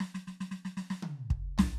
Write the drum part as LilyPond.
\new DrumStaff \drummode { \time 4/4 \tempo 4 = 114 sn16 sn16 sn16 sn16 sn16 sn16 sn16 sn16 tommh8 bd8 <tomfh sn>4 | }